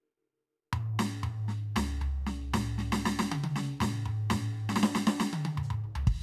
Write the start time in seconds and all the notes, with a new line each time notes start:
0.73 mid tom
0.99 snare
1.23 mid tom
1.48 snare
1.76 snare, floor tom
2.01 floor tom
2.27 snare
2.53 snare, mid tom
2.78 snare
2.92 snare
3.06 snare
3.19 snare
3.32 high tom
3.44 high tom
3.49 hi-hat pedal
3.56 snare
3.80 snare, mid tom
4.06 mid tom
4.30 snare, mid tom
4.69 snare
4.76 snare
4.83 snare
4.95 snare
5.07 snare
5.20 snare
5.33 high tom
5.45 high tom
5.57 mid tom
5.63 hi-hat pedal
5.70 mid tom
5.84 floor tom
5.95 floor tom
6.07 kick, crash